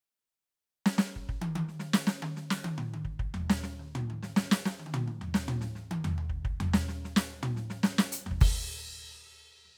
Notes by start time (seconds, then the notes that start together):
0.86 snare
0.98 snare, hi-hat pedal
1.16 kick
1.29 kick
1.42 high tom
1.55 high tom
1.68 snare
1.80 snare
1.93 snare
2.07 snare
2.22 high tom
2.36 snare
2.50 snare
2.64 high tom
2.78 mid tom
2.94 high tom
3.05 kick
3.19 kick
3.34 floor tom
3.50 snare
3.63 snare
3.79 high tom
3.95 mid tom
4.10 high tom
4.23 snare
4.36 snare
4.51 snare
4.66 snare
4.80 high tom
4.86 high tom
4.94 mid tom
5.08 mid tom
5.21 floor tom
5.34 snare
5.48 mid tom
5.61 snare
5.75 snare
5.91 high tom
6.04 floor tom
6.18 high tom
6.29 kick
6.45 kick
6.60 floor tom
6.74 snare
6.88 snare
7.05 snare
7.16 snare
7.43 mid tom
7.56 snare
7.70 snare
7.83 snare
7.98 snare
8.12 closed hi-hat
8.26 floor tom
8.31 kick
8.41 kick, crash
9.65 floor tom